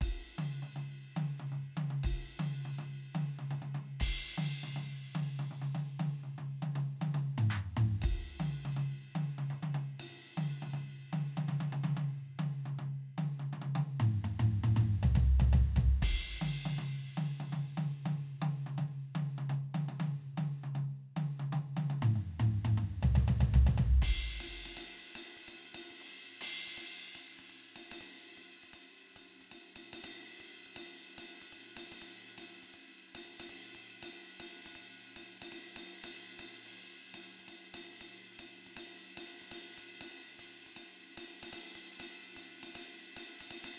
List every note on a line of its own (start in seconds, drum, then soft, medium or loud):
0.01 kick medium
0.01 ride loud
0.38 high tom loud
0.62 high tom medium
0.76 high tom medium
1.16 high tom loud
1.39 high tom medium
1.52 high tom medium
1.77 high tom loud
1.90 high tom medium
2.03 kick medium
2.03 ride loud
2.39 high tom loud
2.65 high tom medium
2.78 high tom loud
3.15 high tom loud
3.39 high tom medium
3.51 high tom medium
3.62 high tom medium
3.74 high tom loud
4.00 kick medium
4.00 ride loud
4.38 high tom loud
4.63 high tom loud
4.76 high tom loud
5.15 high tom loud
5.39 high tom loud
5.51 high tom medium
5.61 high tom medium
5.61 percussion soft
5.74 high tom loud
5.99 high tom loud
6.23 high tom medium
6.38 high tom medium
6.62 high tom loud
6.75 high tom loud
7.01 high tom loud
7.14 high tom loud
7.38 mid tom loud
7.50 percussion loud
7.77 mid tom loud
8.02 kick medium
8.02 ride loud
8.40 high tom loud
8.65 high tom loud
8.76 high tom loud
9.15 high tom loud
9.38 high tom loud
9.50 high tom medium
9.62 high tom loud
9.74 high tom loud
9.99 ride loud
10.37 high tom loud
10.62 high tom loud
10.73 high tom loud
11.12 high tom loud
11.37 high tom loud
11.48 high tom loud
11.60 high tom loud
11.72 high tom loud
11.83 high tom loud
11.97 high tom loud
12.39 high tom loud
12.65 high tom loud
12.79 high tom loud
13.18 high tom loud
13.39 high tom medium
13.53 high tom loud
13.61 high tom loud
13.75 high tom loud
14.00 mid tom loud
14.24 mid tom loud
14.39 mid tom loud
14.63 mid tom loud
14.76 mid tom loud
15.03 floor tom loud
15.15 floor tom loud
15.40 floor tom loud
15.53 floor tom loud
15.76 floor tom loud
16.02 kick medium
16.02 ride loud
16.41 high tom loud
16.65 high tom loud
16.78 high tom loud
17.17 high tom loud
17.40 high tom loud
17.52 high tom loud
17.77 high tom loud
18.05 high tom loud
18.42 high tom loud
18.66 high tom medium
18.78 high tom loud
19.15 high tom loud
19.38 high tom loud
19.49 high tom loud
19.74 high tom loud
19.88 high tom loud
20.00 high tom loud
20.37 high tom loud
20.63 high tom medium
20.75 high tom loud
21.16 high tom loud
21.39 high tom loud
21.52 high tom loud
21.76 high tom loud
21.90 high tom loud
22.02 mid tom loud
22.15 mid tom medium
22.39 mid tom loud
22.65 mid tom loud
22.77 mid tom loud
23.02 floor tom loud
23.15 floor tom loud
23.28 floor tom loud
23.40 floor tom loud
23.54 floor tom loud
23.66 floor tom loud
23.77 floor tom loud
24.02 kick medium
24.02 ride loud
24.40 ride loud
24.65 ride loud
24.77 ride loud
25.15 ride loud
25.37 ride medium
25.48 ride medium
25.74 ride loud
25.90 ride medium
26.00 ride medium
26.41 ride loud
26.67 ride medium
27.15 ride medium
27.39 ride medium
27.49 ride bell medium
27.76 ride loud
27.91 ride loud
28.01 ride medium
28.37 ride medium
28.63 ride medium
28.73 ride medium
29.16 ride medium
29.41 ride soft
29.51 ride loud
29.76 ride loud
29.93 ride loud
30.04 ride loud
30.40 ride medium
30.66 ride soft
31.18 ride loud
31.41 ride medium
31.52 ride medium
31.77 ride loud
31.92 ride loud
32.02 ride medium
32.38 ride loud
32.63 ride medium
32.74 ride medium
33.15 ride loud
33.40 ride loud
33.49 ride medium
33.75 ride medium
34.02 ride loud
34.40 ride loud
34.66 ride medium
34.75 ride medium
35.16 ride loud
35.42 ride loud
35.52 ride loud
35.76 ride loud
36.04 ride loud
36.39 ride loud
36.65 ride medium
36.75 ride soft
37.14 ride loud
37.39 ride medium
37.48 ride medium
37.74 ride loud
38.01 ride medium
38.39 ride loud
38.66 ride medium
38.77 ride loud
39.17 ride loud
39.41 ride medium
39.51 ride loud
39.77 ride medium
40.01 ride loud
40.39 ride medium
40.66 ride medium
40.76 ride loud
41.17 ride loud
41.43 ride loud
41.75 ride medium
42.00 ride loud
42.36 ride medium
42.63 ride loud
42.75 ride loud
43.16 ride loud
43.40 ride medium
43.51 ride loud
43.64 ride loud
43.74 ride soft